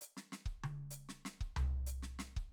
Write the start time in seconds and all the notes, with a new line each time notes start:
0.01 hi-hat pedal
0.17 snare
0.32 snare
0.46 kick
0.64 high tom
0.91 hi-hat pedal
1.09 snare
1.25 snare
1.41 kick
1.56 floor tom
1.86 hi-hat pedal
2.02 snare
2.19 snare
2.36 kick